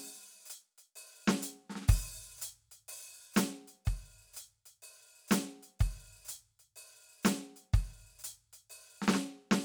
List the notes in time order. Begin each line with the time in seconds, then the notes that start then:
0.45 hi-hat pedal
0.50 closed hi-hat
0.78 closed hi-hat
0.96 open hi-hat
1.28 snare, hi-hat pedal
1.42 closed hi-hat
1.70 snare
1.76 snare
1.81 snare
1.87 open hi-hat, kick, snare
2.38 closed hi-hat, hi-hat pedal
2.71 closed hi-hat
2.88 open hi-hat
3.34 closed hi-hat, snare, hi-hat pedal
3.68 closed hi-hat
3.85 open hi-hat, kick
4.34 closed hi-hat, hi-hat pedal
4.66 closed hi-hat
4.82 open hi-hat
5.28 closed hi-hat, snare, hi-hat pedal
5.63 closed hi-hat
5.79 open hi-hat, kick
6.25 closed hi-hat, hi-hat pedal
6.59 closed hi-hat
6.76 open hi-hat
7.23 closed hi-hat, snare, hi-hat pedal
7.56 closed hi-hat
7.73 open hi-hat, kick
8.19 hi-hat pedal
8.24 closed hi-hat
8.53 closed hi-hat
8.70 open hi-hat
9.02 snare
9.07 snare, hi-hat pedal
9.14 snare
9.51 snare